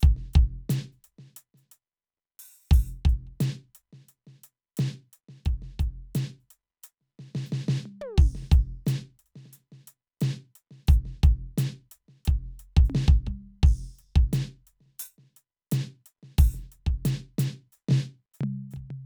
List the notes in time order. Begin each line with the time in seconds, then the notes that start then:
0.01 open hi-hat, kick, hi-hat pedal
0.17 snare
0.34 closed hi-hat, kick
0.70 closed hi-hat, snare
0.93 snare, hi-hat pedal
1.05 closed hi-hat
1.19 snare
1.37 open hi-hat
1.55 snare, hi-hat pedal
1.72 closed hi-hat
2.40 open hi-hat
2.72 open hi-hat, kick
3.06 kick, closed hi-hat
3.27 kick
3.41 closed hi-hat, snare
3.75 closed hi-hat
3.93 snare
4.09 closed hi-hat
4.27 snare
4.44 closed hi-hat
4.78 closed hi-hat, snare
5.13 closed hi-hat
5.29 snare
5.46 kick, closed hi-hat
5.63 snare
5.80 closed hi-hat, kick
6.15 closed hi-hat, snare
6.40 hi-hat pedal
6.51 closed hi-hat
6.84 closed hi-hat, hi-hat pedal
7.02 snare
7.20 snare
7.36 snare
7.46 hi-hat pedal
7.53 snare
7.69 snare, hi-hat pedal
7.86 mid tom
8.02 high tom
8.18 kick, crash
8.36 snare
8.43 snare
8.52 closed hi-hat, kick
8.87 closed hi-hat, snare, hi-hat pedal
9.20 closed hi-hat
9.26 closed hi-hat
9.36 snare
9.46 snare
9.53 open hi-hat, hi-hat pedal
9.73 snare
9.88 closed hi-hat
10.21 closed hi-hat, snare
10.56 closed hi-hat
10.71 snare
10.88 open hi-hat, kick
11.06 snare
11.24 closed hi-hat, kick
11.58 closed hi-hat, snare
11.92 closed hi-hat
12.09 snare
12.26 closed hi-hat, kick
12.45 snare
12.60 closed hi-hat
12.77 kick
12.85 hi-hat pedal
12.90 high tom
12.95 snare
13.09 kick
13.27 kick, mid tom
13.64 kick, crash
13.79 snare
13.84 snare
13.95 closed hi-hat, hi-hat pedal
14.16 kick
14.34 closed hi-hat, snare
14.67 closed hi-hat
14.81 snare
14.86 snare
14.99 open hi-hat, hi-hat pedal
15.19 snare
15.24 snare
15.37 closed hi-hat
15.72 closed hi-hat, snare
16.06 open hi-hat
16.23 snare
16.39 open hi-hat, kick
16.54 snare, hi-hat pedal
16.72 closed hi-hat
16.87 kick
17.06 closed hi-hat, snare
17.39 closed hi-hat, snare
17.73 hi-hat pedal
17.89 snare
17.91 snare
18.34 hi-hat pedal
18.41 floor tom, mid tom
18.71 floor tom, hi-hat pedal
18.77 kick
18.91 floor tom